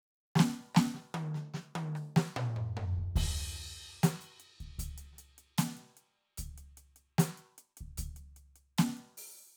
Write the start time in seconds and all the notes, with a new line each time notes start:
0.36 snare
0.40 snare
0.75 cross-stick, snare
0.95 snare
1.15 high tom
1.35 snare
1.55 snare
1.76 high tom
1.96 cross-stick
2.17 snare
2.37 mid tom
2.57 floor tom
2.78 floor tom
2.99 kick
3.16 kick, crash
4.04 closed hi-hat, snare
4.21 closed hi-hat
4.41 closed hi-hat
4.61 kick, closed hi-hat
4.79 closed hi-hat, kick
4.98 closed hi-hat
5.13 snare
5.19 closed hi-hat
5.39 closed hi-hat
5.58 closed hi-hat, snare
5.78 closed hi-hat
5.98 closed hi-hat
6.38 closed hi-hat, kick
6.58 closed hi-hat
6.78 closed hi-hat
6.97 closed hi-hat
7.19 closed hi-hat, snare
7.38 closed hi-hat
7.59 closed hi-hat
7.78 kick, closed hi-hat
7.98 closed hi-hat, kick
8.17 closed hi-hat
8.37 closed hi-hat
8.56 closed hi-hat
8.79 closed hi-hat, snare
8.98 closed hi-hat
9.18 open hi-hat